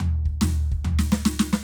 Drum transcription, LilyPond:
\new DrumStaff \drummode { \time 4/4 \tempo 4 = 144 \tuplet 3/2 { tomfh8 r8 bd8 <sn tomfh>8 r8 bd8 tomfh8 sn8 sn8 sn8 sn8 sn8 } | }